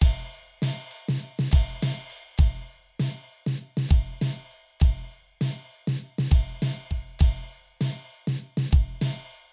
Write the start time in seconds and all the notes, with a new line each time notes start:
0.01 kick, ride
0.34 ride
0.62 snare, ride
0.91 ride
1.09 snare
1.19 ride
1.39 snare
1.52 kick, ride
1.82 snare, ride
2.10 ride
2.38 kick, ride bell
2.68 ride bell
3.00 snare, ride bell
3.29 ride bell
3.46 snare
3.58 ride bell
3.77 snare
3.89 kick, ride bell
4.21 snare, ride bell
4.51 ride bell
4.80 kick, ride bell
5.11 ride bell
5.41 snare, ride bell
5.71 ride bell
5.87 snare
6.00 ride bell
6.19 snare
6.31 kick, ride bell
6.62 snare, ride bell
6.91 kick, ride
7.19 kick, snare, ride, floor tom
7.50 ride bell
7.81 snare, ride bell
8.10 ride bell
8.27 snare
8.40 ride bell
8.57 snare
8.71 kick, ride bell
9.01 snare, ride bell
9.31 ride